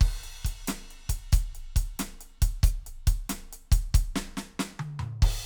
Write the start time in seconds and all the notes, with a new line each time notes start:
0.01 kick, crash
0.24 closed hi-hat
0.45 kick, closed hi-hat
0.68 snare, closed hi-hat
0.91 closed hi-hat
1.09 kick, closed hi-hat
1.32 closed hi-hat, kick
1.55 closed hi-hat
1.76 kick, closed hi-hat
1.99 snare, closed hi-hat
2.21 closed hi-hat
2.42 kick, closed hi-hat
2.63 kick, hi-hat pedal, open hi-hat
2.87 closed hi-hat
3.07 kick, closed hi-hat
3.29 snare, closed hi-hat
3.53 closed hi-hat
3.72 kick, closed hi-hat
3.94 kick, closed hi-hat
4.16 snare
4.37 snare
4.60 snare
4.79 high tom
4.99 mid tom
5.22 kick, crash